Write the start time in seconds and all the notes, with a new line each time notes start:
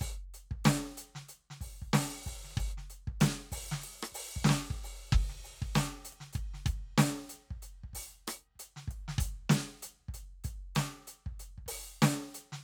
0.01 open hi-hat, kick
0.09 hi-hat pedal
0.34 closed hi-hat
0.51 kick
0.65 closed hi-hat, snare
0.98 closed hi-hat
1.15 snare
1.29 closed hi-hat
1.51 snare
1.61 open hi-hat, kick
1.82 kick
1.94 open hi-hat, snare
2.26 open hi-hat, kick
2.44 snare
2.50 snare
2.57 open hi-hat, kick
2.78 snare
2.90 closed hi-hat
3.08 kick
3.21 closed hi-hat, snare
3.52 open hi-hat, kick
3.64 kick
3.72 snare
3.84 open hi-hat
4.03 cross-stick
4.12 open hi-hat, kick
4.37 kick
4.45 kick, snare
4.49 snare
4.71 kick
4.84 open hi-hat
5.13 kick, crash
5.29 snare
5.44 open hi-hat
5.62 kick
5.75 open hi-hat, snare
5.81 hi-hat pedal
6.05 closed hi-hat
6.13 closed hi-hat
6.21 snare
6.33 closed hi-hat, kick
6.54 snare
6.66 closed hi-hat, kick
6.98 closed hi-hat, snare
7.30 closed hi-hat
7.51 kick
7.63 closed hi-hat
7.84 kick
7.94 open hi-hat, kick
8.28 open hi-hat, cross-stick
8.56 closed hi-hat, kick
8.77 snare
8.88 kick, closed hi-hat
9.08 snare
9.18 closed hi-hat, kick
9.50 closed hi-hat, snare
9.61 snare
9.83 closed hi-hat
10.09 kick
10.14 closed hi-hat
10.44 closed hi-hat, kick
10.76 closed hi-hat, snare
11.08 closed hi-hat
11.26 kick
11.40 closed hi-hat
11.58 kick
11.66 open hi-hat, kick
12.02 open hi-hat, snare, hi-hat pedal
12.35 closed hi-hat
12.53 snare